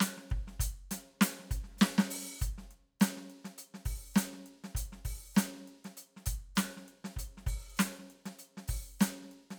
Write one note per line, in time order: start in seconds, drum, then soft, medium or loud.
0.01 closed hi-hat loud
0.01 snare loud
0.18 snare soft
0.31 kick medium
0.31 closed hi-hat soft
0.48 snare soft
0.60 closed hi-hat loud
0.60 kick medium
0.92 closed hi-hat loud
0.92 snare medium
1.22 closed hi-hat loud
1.22 snare loud
1.40 snare soft
1.51 closed hi-hat medium
1.51 kick medium
1.64 snare soft
1.68 snare soft
1.71 snare soft
1.77 snare soft
1.77 hi-hat pedal medium
1.82 snare loud
1.99 snare loud
2.11 open hi-hat loud
2.40 closed hi-hat medium
2.40 kick medium
2.40 hi-hat pedal medium
2.58 snare soft
2.71 snare soft
2.71 closed hi-hat soft
3.01 closed hi-hat loud
3.01 snare loud
3.01 hi-hat pedal medium
3.17 snare soft
3.30 closed hi-hat soft
3.45 snare soft
3.45 closed hi-hat soft
3.59 closed hi-hat medium
3.75 snare soft
3.86 open hi-hat medium
3.86 kick medium
4.15 closed hi-hat loud
4.15 snare loud
4.15 hi-hat pedal medium
4.33 snare soft
4.47 closed hi-hat soft
4.64 snare soft
4.64 closed hi-hat soft
4.75 closed hi-hat medium
4.75 kick medium
4.93 snare soft
5.05 open hi-hat medium
5.05 kick soft
5.35 closed hi-hat loud
5.35 snare loud
5.35 hi-hat pedal medium
5.56 snare soft
5.68 closed hi-hat soft
5.85 snare soft
5.85 closed hi-hat soft
5.98 closed hi-hat medium
6.17 snare soft
6.27 closed hi-hat loud
6.27 kick medium
6.27 snare soft
6.56 closed hi-hat loud
6.56 snare loud
6.56 hi-hat pedal medium
6.77 snare soft
6.89 closed hi-hat soft
7.05 snare medium
7.05 closed hi-hat soft
7.17 closed hi-hat medium
7.17 kick soft
7.38 snare soft
7.47 open hi-hat medium
7.47 kick medium
7.78 closed hi-hat loud
7.78 snare loud
7.78 hi-hat pedal medium
8.00 snare soft
8.11 closed hi-hat soft
8.26 snare medium
8.26 closed hi-hat medium
8.39 closed hi-hat medium
8.58 snare soft
8.68 open hi-hat medium
8.68 kick medium
9.00 closed hi-hat loud
9.00 snare loud
9.00 hi-hat pedal medium
9.23 snare soft
9.32 closed hi-hat soft
9.51 snare soft
9.51 closed hi-hat soft